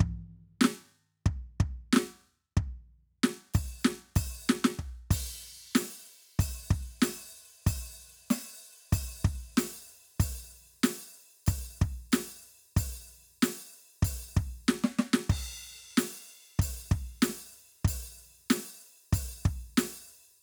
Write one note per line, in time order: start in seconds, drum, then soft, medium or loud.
0.01 kick loud
0.62 snare loud
0.65 snare loud
1.27 kick loud
1.61 kick loud
1.93 snare loud
1.97 snare loud
2.58 kick loud
3.24 snare loud
3.55 kick loud
3.55 percussion loud
3.82 snare loud
3.82 percussion soft
4.01 snare soft
4.16 kick loud
4.16 percussion loud
4.47 snare loud
4.47 percussion soft
4.65 snare loud
4.80 kick medium
5.11 kick loud
5.11 percussion loud
5.11 crash loud
5.76 snare loud
5.76 percussion loud
5.84 snare soft
6.40 kick loud
6.40 percussion loud
6.71 kick loud
7.03 snare loud
7.03 percussion loud
7.67 kick loud
7.67 percussion loud
8.31 snare loud
8.31 percussion loud
8.93 kick loud
8.93 percussion loud
9.25 kick loud
9.58 snare loud
9.58 percussion loud
10.20 kick loud
10.20 percussion loud
10.43 kick soft
10.84 snare loud
10.84 percussion loud
11.47 kick loud
11.47 percussion loud
11.82 kick loud
12.13 snare loud
12.13 percussion loud
12.77 kick loud
12.77 percussion loud
13.43 snare loud
13.43 percussion loud
14.03 kick loud
14.03 percussion loud
14.37 kick loud
14.67 snare loud
14.67 percussion soft
14.85 snare loud
14.99 snare loud
15.14 snare loud
15.30 kick loud
15.30 crash loud
15.98 snare loud
15.98 percussion loud
16.60 kick loud
16.60 percussion loud
16.92 kick loud
17.23 snare loud
17.23 percussion loud
17.30 snare soft
17.85 kick loud
17.85 percussion loud
18.51 snare loud
18.51 percussion loud
18.59 snare soft
19.13 kick loud
19.13 percussion loud
19.46 kick loud
19.78 snare loud
19.78 percussion loud